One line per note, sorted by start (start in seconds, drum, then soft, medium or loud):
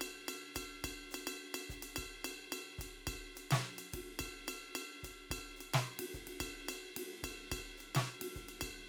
0.01 hi-hat pedal medium
0.01 ride bell loud
0.28 ride bell loud
0.55 kick soft
0.55 hi-hat pedal medium
0.55 ride bell loud
0.84 kick soft
0.84 ride bell loud
1.11 hi-hat pedal medium
1.11 ride bell loud
1.27 ride bell loud
1.54 ride bell loud
1.70 kick soft
1.70 hi-hat pedal medium
1.83 ride bell medium
1.96 kick soft
1.96 ride bell loud
2.25 hi-hat pedal medium
2.25 ride bell loud
2.52 ride bell loud
2.79 kick soft
2.79 hi-hat pedal medium
2.79 ride bell medium
3.07 kick soft
3.07 ride bell loud
3.17 kick soft
3.35 hi-hat pedal soft
3.35 ride bell medium
3.51 snare loud
3.51 ride bell loud
3.78 ride bell medium
3.92 kick soft
3.92 hi-hat pedal medium
3.92 ride loud
4.19 kick soft
4.19 ride bell loud
4.47 hi-hat pedal medium
4.47 ride bell loud
4.75 ride bell loud
5.03 kick soft
5.03 hi-hat pedal medium
5.03 ride bell medium
5.31 kick soft
5.31 ride bell loud
5.36 kick soft
5.56 hi-hat pedal soft
5.61 ride bell medium
5.74 snare medium
5.74 ride bell loud
5.99 ride loud
6.14 kick soft
6.14 hi-hat pedal medium
6.27 ride medium
6.40 kick soft
6.40 ride bell loud
6.69 hi-hat pedal medium
6.69 ride bell loud
6.97 ride loud
7.23 kick soft
7.23 hi-hat pedal soft
7.23 ride bell loud
7.52 kick soft
7.52 ride bell loud
7.57 kick soft
7.78 hi-hat pedal medium
7.78 ride bell medium
7.95 snare loud
7.95 ride bell loud
8.21 ride loud
8.35 kick soft
8.35 hi-hat pedal medium
8.49 ride bell medium
8.61 kick soft
8.61 ride bell loud